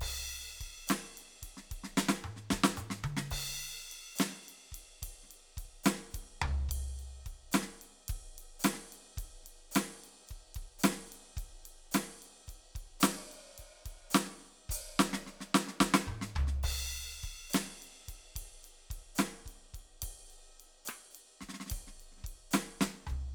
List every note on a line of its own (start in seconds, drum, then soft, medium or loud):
0.01 kick soft
0.01 crash loud
0.08 kick soft
0.41 snare soft
0.46 snare soft
0.49 snare soft
0.52 snare soft
0.55 snare soft
0.61 kick soft
0.61 ride medium
0.87 snare loud
0.87 hi-hat pedal medium
0.87 ride loud
1.18 ride medium
1.43 kick soft
1.43 ride medium
1.57 snare soft
1.71 kick soft
1.71 ride medium
1.84 snare medium
1.97 snare loud
1.97 hi-hat pedal medium
2.09 snare loud
2.22 hi-hat pedal soft
2.22 mid tom medium
2.36 snare soft
2.51 kick soft
2.51 snare loud
2.64 snare loud
2.77 hi-hat pedal medium
2.77 mid tom medium
2.90 snare medium
3.04 kick soft
3.04 high tom loud
3.17 snare medium
3.31 kick soft
3.31 crash loud
3.38 kick soft
3.92 ride medium
4.16 hi-hat pedal medium
4.16 ride loud
4.20 snare loud
4.30 snare soft
4.43 hi-hat pedal soft
4.49 ride medium
4.72 kick soft
4.72 ride medium
5.02 kick soft
5.02 ride medium
5.08 kick soft
5.23 snare soft
5.28 snare soft
5.28 ride medium
5.40 snare soft
5.57 kick soft
5.57 cross-stick soft
5.57 ride medium
5.65 kick soft
5.84 snare loud
5.84 hi-hat pedal medium
5.84 ride medium
5.95 snare soft
6.11 kick soft
6.11 hi-hat pedal soft
6.11 ride medium
6.22 snare soft
6.42 kick soft
6.42 floor tom loud
6.69 kick soft
6.69 ride loud
6.75 kick soft
6.99 ride soft
7.19 snare soft
7.26 kick soft
7.26 ride soft
7.52 snare loud
7.52 hi-hat pedal medium
7.52 ride loud
7.62 snare soft
7.82 ride medium
7.86 snare soft
7.92 snare soft
8.09 kick medium
8.09 ride medium
8.17 kick soft
8.38 ride medium
8.60 hi-hat pedal medium
8.64 snare loud
8.64 ride loud
8.74 snare soft
8.93 snare soft
8.93 ride medium
9.00 snare soft
9.18 kick soft
9.18 ride medium
9.24 kick soft
9.43 snare soft
9.43 ride medium
9.72 hi-hat pedal medium
9.72 ride loud
9.76 snare loud
10.04 ride soft
10.27 kick soft
10.27 hi-hat pedal soft
10.27 ride soft
10.55 kick soft
10.55 ride medium
10.62 kick soft
10.79 hi-hat pedal medium
10.84 snare loud
10.84 ride loud
10.92 snare soft
11.06 hi-hat pedal soft
11.12 ride medium
11.25 snare soft
11.29 snare soft
11.37 kick soft
11.37 hi-hat pedal soft
11.37 ride medium
11.44 kick soft
11.66 ride medium
11.92 snare loud
11.92 hi-hat pedal medium
11.92 ride loud
12.22 ride soft
12.47 kick soft
12.47 hi-hat pedal soft
12.47 ride soft
12.75 kick soft
12.75 ride soft
13.00 snare loud
13.00 hi-hat pedal loud
13.00 ride loud
13.27 snare soft
13.32 ride soft
13.43 snare soft
13.46 snare soft
13.48 snare soft
13.58 kick soft
13.58 ride medium
13.86 kick soft
13.86 ride medium
14.11 hi-hat pedal loud
14.15 snare loud
14.15 ride loud
14.25 snare soft
14.39 snare soft
14.69 kick soft
14.69 hi-hat pedal loud
14.76 kick soft
14.99 snare loud
15.13 snare medium
15.27 snare soft
15.41 snare medium
15.55 snare loud
15.68 snare medium
15.81 kick soft
15.81 snare loud
15.94 snare loud
16.07 kick soft
16.07 mid tom medium
16.12 kick soft
16.22 snare medium
16.36 kick soft
16.36 floor tom loud
16.47 snare soft
16.63 kick soft
16.63 crash loud
16.70 kick soft
17.06 snare soft
17.24 kick soft
17.24 ride soft
17.30 kick soft
17.50 hi-hat pedal medium
17.50 ride loud
17.55 snare loud
17.79 hi-hat pedal soft
17.79 ride soft
17.95 snare soft
18.00 snare soft
18.06 kick soft
18.06 hi-hat pedal soft
18.06 ride medium
18.36 kick soft
18.36 ride medium
18.41 kick soft
18.63 hi-hat pedal soft
18.63 ride soft
18.90 kick soft
18.90 ride medium
18.98 kick soft
19.15 snare loud
19.15 hi-hat pedal medium
19.15 ride medium
19.46 kick soft
19.46 ride soft
19.74 kick soft
19.74 ride soft
19.78 snare soft
19.90 snare soft
19.93 snare soft
20.01 kick soft
20.01 hi-hat pedal soft
20.01 ride loud
20.30 ride soft
20.60 ride soft
20.85 cross-stick medium
20.85 hi-hat pedal medium
20.85 ride loud
21.11 hi-hat pedal soft
21.15 ride medium
21.25 snare soft
21.41 kick soft
21.41 snare soft
21.49 snare soft
21.54 snare medium
21.60 snare medium
21.66 snare soft
21.66 ride loud
21.72 kick soft
21.72 hi-hat pedal soft
21.78 kick soft
21.87 snare soft
22.00 ride soft
22.12 snare soft
22.17 snare soft
22.20 snare soft
22.24 kick soft
22.24 ride medium
22.51 snare loud
22.51 hi-hat pedal medium
22.51 ride loud
22.81 kick soft
22.81 snare loud
23.07 kick soft
23.07 floor tom loud
23.07 hi-hat pedal soft